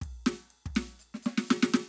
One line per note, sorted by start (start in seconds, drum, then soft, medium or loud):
0.02 kick medium
0.02 ride medium
0.27 snare loud
0.27 ride medium
0.51 ride medium
0.66 kick medium
0.76 snare loud
0.76 ride medium
1.00 percussion medium
1.15 snare medium
1.23 snare loud
1.23 percussion medium
1.38 snare loud
1.46 percussion medium
1.51 snare loud
1.63 snare loud
1.74 snare loud